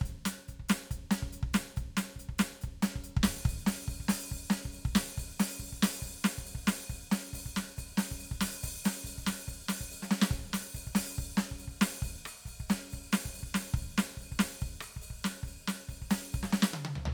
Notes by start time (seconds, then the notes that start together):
0.01 kick, snare
0.05 closed hi-hat
0.25 closed hi-hat, snare
0.48 closed hi-hat, kick
0.59 kick
0.69 closed hi-hat, snare
0.84 snare
0.91 closed hi-hat, kick
1.11 closed hi-hat, snare
1.22 kick, snare
1.32 closed hi-hat
1.43 kick
1.53 closed hi-hat, snare
1.73 closed hi-hat, kick, snare
1.97 closed hi-hat, snare
2.16 closed hi-hat, kick, snare
2.29 kick
2.38 closed hi-hat, snare
2.58 closed hi-hat, snare
2.63 kick
2.82 closed hi-hat, snare
2.95 kick, snare
3.04 closed hi-hat
3.17 kick
3.23 open hi-hat, snare
3.45 open hi-hat, kick, snare
3.66 open hi-hat, snare
3.86 open hi-hat, kick, snare
4.00 kick
4.08 open hi-hat, snare
4.31 kick
4.50 open hi-hat, snare
4.65 kick
4.70 open hi-hat, snare
4.85 kick
4.95 open hi-hat, snare
5.17 open hi-hat, kick, snare
5.39 open hi-hat, snare
5.59 kick, snare
5.72 kick
5.82 open hi-hat, snare
6.02 open hi-hat, kick, snare
6.24 open hi-hat, snare
6.38 kick
6.44 open hi-hat, snare
6.55 kick
6.67 open hi-hat, snare
6.89 open hi-hat, kick, snare
7.11 open hi-hat, snare
7.33 open hi-hat, kick
7.37 snare
7.45 kick
7.55 open hi-hat, snare
7.77 open hi-hat, kick
7.97 open hi-hat, snare
8.11 kick
8.19 open hi-hat, snare
8.31 kick
8.41 open hi-hat, snare
8.63 open hi-hat, kick
8.84 open hi-hat, snare
9.04 open hi-hat, kick
9.18 kick
9.26 open hi-hat, snare
9.47 open hi-hat, kick
9.68 open hi-hat, snare
9.80 kick
9.91 open hi-hat
10.02 snare
10.11 snare
10.21 snare
10.31 open hi-hat, kick
10.53 open hi-hat, snare
10.73 open hi-hat, kick, snare
10.87 kick
10.95 open hi-hat, snare
11.14 open hi-hat, kick, snare
11.37 open hi-hat, snare
11.51 kick
11.58 open hi-hat
11.67 kick
11.81 open hi-hat, snare
12.02 open hi-hat, kick
12.25 open hi-hat, cross-stick
12.45 open hi-hat, kick, snare
12.60 kick
12.69 open hi-hat, snare
12.88 open hi-hat, snare
12.93 kick
13.12 open hi-hat, snare
13.25 kick, snare
13.34 open hi-hat
13.43 kick
13.54 open hi-hat, snare
13.74 open hi-hat, kick, snare
13.97 open hi-hat, snare
14.17 open hi-hat, kick
14.32 kick
14.39 open hi-hat, snare
14.59 open hi-hat, kick
14.81 open hi-hat, cross-stick
14.96 kick
15.02 open hi-hat
15.10 kick
15.24 open hi-hat, snare
15.43 open hi-hat, kick
15.67 open hi-hat, snare
15.88 open hi-hat, kick
16.02 kick
16.10 open hi-hat, snare
16.32 open hi-hat, kick
16.43 snare
16.52 snare
16.62 snare
16.73 high tom
16.85 high tom
16.95 floor tom
17.05 floor tom